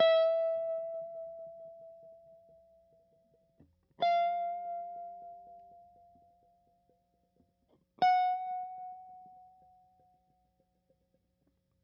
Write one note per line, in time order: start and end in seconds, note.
0.00 1.71 E5
4.03 5.39 F5
8.02 9.48 F#5